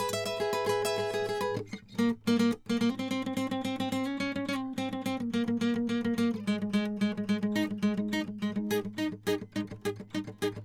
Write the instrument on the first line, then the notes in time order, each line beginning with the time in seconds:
acoustic guitar
0.00 G#4 B4
0.14 E5
0.27 B4 E5
0.41 G#4
0.54 G#4 B4
0.64 C5
0.68 G#4 B4 E5
0.86 B4 E5
0.98 G#4
1.15 G#4
1.30 G#4
1.42 G#4 B4
1.99 A#3
2.28 A#3
2.41 A#3
2.71 A#3
2.82 A#3
3.00 C4
3.12 C4
3.27 C4
3.38 C4
3.52 C4
3.66 C4
3.81 C4
3.93 C4
4.07 C#4
4.21 C#4
4.37 C#4
4.50 C#4
4.61 C4
4.79 C4
4.94 C4
5.07 C4
5.21 A#3
5.34 A#3
5.49 A#3
5.62 A#3
5.75 A#3
5.90 A#3
6.06 A#3
6.19 A#3
6.35 G#3
6.48 G#3
6.63 G#3
6.74 G#3
6.86 G#3
7.02 G#3
7.19 G#3
7.30 G#3
7.43 G#3
7.56 G#3 D#4
7.72 G#3
7.83 G#3
7.99 G#3 D#4
8.14 G#3 D#4
8.29 G#3
8.43 G#3
8.57 G#3 D#4
8.71 D#4 G#4
8.86 G#3
8.99 D#4
9.28 D#4 G#4
9.57 D#4
9.86 D#4 G#4
10.15 D#4
10.43 D#4 G#4